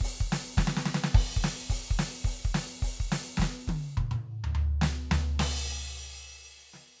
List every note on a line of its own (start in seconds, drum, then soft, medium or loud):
0.01 open hi-hat loud
0.01 kick medium
0.20 kick medium
0.32 open hi-hat loud
0.32 snare loud
0.57 kick medium
0.57 snare loud
0.67 snare loud
0.77 snare loud
0.86 snare loud
0.94 snare loud
1.04 snare loud
1.14 kick loud
1.14 crash loud
1.36 kick medium
1.44 open hi-hat loud
1.44 snare loud
1.70 open hi-hat loud
1.70 kick medium
1.91 kick medium
1.99 open hi-hat loud
1.99 snare loud
2.24 open hi-hat loud
2.24 kick medium
2.45 kick medium
2.54 open hi-hat loud
2.54 snare loud
2.82 open hi-hat loud
2.82 kick medium
3.00 kick medium
3.12 open hi-hat loud
3.12 snare loud
3.37 kick medium
3.37 snare loud
3.42 snare loud
3.68 kick medium
3.68 high tom loud
3.95 kick medium
3.95 hi-hat pedal soft
3.95 mid tom loud
4.11 mid tom loud
4.44 floor tom loud
4.55 floor tom loud
4.81 snare loud
4.83 snare loud
5.11 snare loud
5.11 floor tom loud
5.39 snare loud
5.39 crash loud
6.57 snare soft
6.73 snare soft
6.95 snare soft